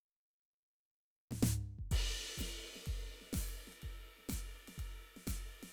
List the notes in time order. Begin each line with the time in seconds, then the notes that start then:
1.31 snare, floor tom
1.42 snare, floor tom, hi-hat pedal
1.79 kick
1.91 kick, crash, ride
2.37 kick, snare, hi-hat pedal, ride
2.75 snare, ride
2.86 kick, ride
3.21 snare
3.33 kick, snare, hi-hat pedal, ride
3.67 snare
3.72 ride
3.82 kick, ride
4.18 snare
4.29 kick, snare, hi-hat pedal, ride
4.67 snare, ride
4.77 kick, hi-hat pedal, ride
5.16 snare
5.27 kick, snare, hi-hat pedal, ride
5.63 snare, ride